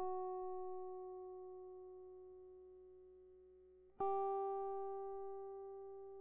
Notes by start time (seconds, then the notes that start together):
0.00 F#4
4.01 G4